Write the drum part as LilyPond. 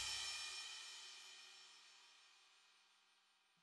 \new DrumStaff \drummode { \time 4/4 \tempo 4 = 124 r4 r4 r4 r4 | r4 r4 r4 \tuplet 3/2 { r8 sn8 r8 } | }